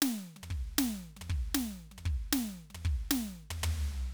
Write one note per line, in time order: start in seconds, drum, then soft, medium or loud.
0.02 snare loud
0.36 high tom soft
0.43 floor tom medium
0.50 kick soft
0.78 snare loud
1.16 high tom soft
1.21 floor tom medium
1.30 kick medium
1.54 snare loud
1.91 high tom soft
1.98 floor tom soft
2.05 kick medium
2.33 snare loud
2.70 high tom soft
2.74 floor tom medium
2.85 kick medium
3.11 snare loud
3.50 floor tom medium
3.63 floor tom loud